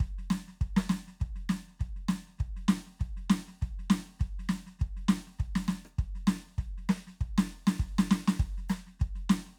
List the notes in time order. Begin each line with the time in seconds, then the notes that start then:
0.01 kick, snare
0.19 snare
0.31 snare
0.49 snare
0.62 kick, snare
0.77 snare
0.90 snare
1.08 snare
1.21 kick, snare
1.36 snare
1.50 snare
1.69 snare
1.80 kick, snare
1.97 snare
2.09 snare
2.28 snare
2.39 kick, snare
2.57 snare
2.69 snare
2.87 snare
3.00 kick, snare
3.18 snare
3.31 snare
3.48 snare
3.62 kick, snare
3.80 snare
3.91 snare
4.07 snare
4.20 kick, snare
4.40 snare
4.50 snare
4.67 snare
4.80 kick, snare
4.97 snare
5.09 snare
5.28 snare
5.40 kick, snare
5.56 snare
5.69 snare
5.86 cross-stick
5.99 kick, snare
6.16 snare
6.28 snare
6.49 snare
6.59 kick, snare
6.78 snare
6.90 snare
7.08 snare
7.21 kick, snare
7.39 snare
7.53 snare
7.68 snare
7.80 kick, snare
7.99 snare
8.12 snare
8.28 snare
8.40 kick, snare
8.58 snare
8.63 kick
8.70 snare, hi-hat pedal
8.77 kick
8.88 snare
9.00 kick, snare
9.16 snare
9.30 snare, hi-hat pedal
9.47 snare